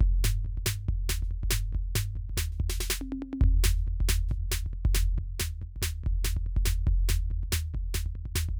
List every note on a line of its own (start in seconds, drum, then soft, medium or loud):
0.01 kick loud
0.01 floor tom medium
0.24 snare loud
0.24 floor tom loud
0.45 kick soft
0.45 floor tom medium
0.58 kick soft
0.66 snare loud
0.66 floor tom loud
0.89 kick medium
0.89 floor tom medium
1.09 snare loud
1.09 floor tom medium
1.23 kick soft
1.23 snare soft
1.31 floor tom medium
1.44 kick medium
1.51 snare loud
1.51 floor tom loud
1.73 kick medium
1.73 floor tom medium
1.96 snare loud
1.96 floor tom loud
2.16 kick soft
2.16 floor tom medium
2.30 kick soft
2.37 snare loud
2.37 floor tom loud
2.52 snare soft
2.60 kick medium
2.60 floor tom medium
2.70 snare loud
2.81 snare loud
2.90 snare loud
3.01 high tom loud
3.12 high tom loud
3.22 high tom loud
3.33 high tom loud
3.41 kick loud
3.41 floor tom loud
3.64 snare loud
3.64 floor tom loud
3.72 snare soft
3.78 snare soft
3.87 kick soft
3.87 floor tom medium
4.01 kick medium
4.09 snare loud
4.09 floor tom loud
4.29 kick medium
4.29 snare soft
4.29 floor tom medium
4.52 snare loud
4.52 floor tom medium
4.66 kick soft
4.73 floor tom medium
4.85 kick loud
4.95 snare loud
4.95 floor tom loud
5.18 kick medium
5.18 floor tom medium
5.40 snare loud
5.40 floor tom loud
5.62 kick soft
5.62 floor tom medium
5.76 kick soft
5.82 snare loud
5.82 floor tom loud
6.04 kick medium
6.04 floor tom medium
6.25 snare loud
6.25 floor tom loud
6.37 kick medium
6.47 floor tom medium
6.57 kick medium
6.66 snare loud
6.66 floor tom loud
6.87 kick loud
6.87 floor tom medium
7.09 snare loud
7.09 floor tom loud
7.31 kick soft
7.31 floor tom medium
7.44 kick soft
7.52 snare loud
7.52 floor tom loud
7.74 kick medium
7.74 floor tom medium
7.94 snare medium
7.94 floor tom loud
8.06 kick soft
8.16 floor tom medium
8.26 kick medium
8.36 snare loud
8.36 floor tom loud
8.49 kick medium